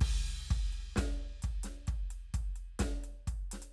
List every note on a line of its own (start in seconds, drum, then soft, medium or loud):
0.01 kick medium
0.01 crash medium
0.51 kick medium
0.51 closed hi-hat soft
0.73 closed hi-hat soft
0.96 kick medium
0.96 snare medium
0.96 closed hi-hat medium
1.43 kick medium
1.43 closed hi-hat medium
1.64 snare soft
1.64 closed hi-hat medium
1.88 kick medium
1.88 closed hi-hat soft
2.11 closed hi-hat soft
2.34 kick medium
2.34 closed hi-hat medium
2.56 closed hi-hat soft
2.79 kick medium
2.79 snare medium
2.79 closed hi-hat medium
3.04 closed hi-hat soft
3.28 kick medium
3.28 closed hi-hat medium
3.52 snare soft
3.52 closed hi-hat medium
3.62 closed hi-hat medium